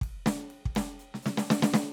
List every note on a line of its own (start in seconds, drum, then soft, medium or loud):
0.01 kick medium
0.01 ride medium
0.26 snare loud
0.26 ride medium
0.50 ride medium
0.66 kick medium
0.75 snare loud
0.75 ride medium
0.99 hi-hat pedal medium
1.14 snare medium
1.22 snare loud
1.22 hi-hat pedal medium
1.37 snare loud
1.46 hi-hat pedal medium
1.50 snare loud
1.62 snare loud
1.74 snare loud